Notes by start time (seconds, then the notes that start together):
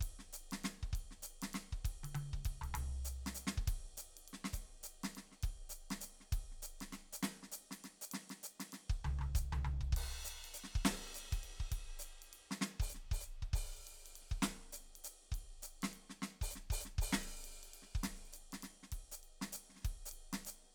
0.01 kick, ride
0.19 snare
0.33 hi-hat pedal, ride
0.52 snare, ride
0.64 snare, ride
0.83 kick
0.93 kick, ride
1.11 snare
1.23 hi-hat pedal, ride
1.42 snare, ride
1.54 snare, ride
1.73 kick
1.85 kick, ride
2.04 high tom, ride
2.15 high tom, ride
2.33 kick
2.45 kick, ride
2.62 floor tom, ride
2.74 floor tom, ride
3.05 hi-hat pedal, ride
3.26 snare, ride
3.35 hi-hat pedal, ride
3.47 snare
3.58 kick
3.68 kick, ride
3.98 hi-hat pedal, ride
4.17 ride
4.28 ride
4.33 snare
4.45 snare
4.53 kick, hi-hat pedal, ride
4.83 hi-hat pedal, ride
5.04 snare, ride
5.15 snare, ride
5.32 snare
5.43 kick, ride
5.70 hi-hat pedal, ride
5.91 snare, ride
6.01 hi-hat pedal, ride
6.21 snare
6.33 kick, ride
6.52 snare
6.63 hi-hat pedal, ride
6.81 snare, ride
6.93 snare, ride
7.13 hi-hat pedal
7.23 snare, ride
7.43 snare
7.52 hi-hat pedal, ride
7.71 snare, ride
7.84 snare, ride
8.02 hi-hat pedal
8.12 snare, ride
8.30 snare, ride
8.43 hi-hat pedal
8.60 snare, ride
8.73 snare, ride
8.90 kick
9.05 floor tom, high tom
9.19 floor tom, high tom
9.35 kick, hi-hat pedal
9.53 floor tom, high tom
9.65 floor tom, high tom
9.81 kick
9.93 kick, ride
9.97 crash
10.25 hi-hat pedal, ride
10.45 ride
10.54 hi-hat pedal, ride
10.64 snare
10.76 kick
10.85 snare, crash
11.15 hi-hat pedal, ride
11.25 snare
11.33 kick, ride
11.44 ride
11.57 kick, snare
11.72 kick, ride
11.99 hi-hat pedal, ride
12.22 ride
12.33 ride
12.51 snare
12.62 snare
12.80 open hi-hat, kick
12.90 hi-hat pedal
12.95 snare
13.12 open hi-hat, kick
13.21 hi-hat pedal
13.26 snare
13.43 kick
13.54 open hi-hat, kick
13.87 ride
14.06 ride
14.16 ride
14.21 snare
14.32 kick
14.43 snare, hi-hat pedal, ride
14.73 hi-hat pedal, ride
14.85 snare
14.96 ride
15.04 hi-hat pedal, ride
15.23 snare
15.29 kick, snare
15.32 snare, ride
15.52 snare
15.63 hi-hat pedal, ride
15.83 snare, ride
15.93 ride
16.10 snare
16.22 snare
16.42 open hi-hat, kick
16.51 hi-hat pedal
16.56 snare
16.71 open hi-hat, kick
16.81 hi-hat pedal
16.85 snare
16.99 open hi-hat, kick
17.13 snare
17.45 ride
17.62 snare, ride
17.74 ride
17.82 snare
17.95 kick
18.04 snare, ride
18.33 hi-hat pedal, ride
18.53 snare, ride
18.63 snare, ride
18.83 snare
18.92 kick, ride
19.12 hi-hat pedal
19.23 ride
19.42 snare, ride
19.53 hi-hat pedal, ride
19.70 snare
19.73 snare
19.76 snare
19.81 kick, snare, ride
20.06 hi-hat pedal
20.12 ride
20.33 snare, ride
20.45 hi-hat pedal, ride
20.64 snare